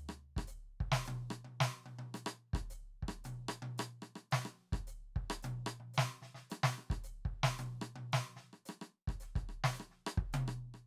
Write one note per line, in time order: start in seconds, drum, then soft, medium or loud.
0.09 cross-stick medium
0.37 kick medium
0.37 cross-stick medium
0.48 hi-hat pedal medium
0.81 kick medium
0.92 snare loud
1.06 hi-hat pedal medium
1.06 high tom loud
1.31 cross-stick medium
1.45 high tom medium
1.61 snare loud
1.61 hi-hat pedal medium
1.86 high tom medium
1.99 high tom medium
2.15 cross-stick medium
2.15 hi-hat pedal medium
2.27 cross-stick medium
2.54 kick medium
2.54 cross-stick medium
2.71 hi-hat pedal medium
3.03 kick medium
3.09 cross-stick medium
3.25 hi-hat pedal medium
3.25 high tom medium
3.49 cross-stick medium
3.63 high tom medium
3.78 cross-stick medium
3.78 hi-hat pedal medium
4.03 cross-stick medium
4.16 cross-stick medium
4.32 snare medium
4.32 hi-hat pedal medium
4.46 cross-stick medium
4.73 kick medium
4.73 cross-stick medium
4.88 hi-hat pedal medium
5.17 kick medium
5.31 cross-stick medium
5.43 hi-hat pedal medium
5.43 high tom loud
5.67 cross-stick medium
5.81 high tom soft
5.94 snare loud
5.94 hi-hat pedal medium
6.22 snare soft
6.35 snare soft
6.51 cross-stick medium
6.51 hi-hat pedal medium
6.64 snare loud
6.79 cross-stick soft
6.91 kick medium
6.91 cross-stick medium
7.04 hi-hat pedal medium
7.26 kick medium
7.44 snare loud
7.59 hi-hat pedal medium
7.59 high tom medium
7.82 cross-stick medium
7.96 high tom medium
8.13 snare medium
8.13 hi-hat pedal medium
8.37 snare soft
8.54 cross-stick soft
8.66 cross-stick medium
8.66 hi-hat pedal medium
8.82 cross-stick medium
9.08 kick medium
9.08 cross-stick soft
9.21 snare soft
9.21 hi-hat pedal medium
9.36 kick medium
9.36 cross-stick soft
9.49 cross-stick soft
9.64 snare medium
9.75 hi-hat pedal medium
9.80 cross-stick medium
9.91 snare soft
10.07 cross-stick medium
10.18 kick medium
10.34 hi-hat pedal medium
10.34 high tom loud
10.48 cross-stick medium
10.75 cross-stick soft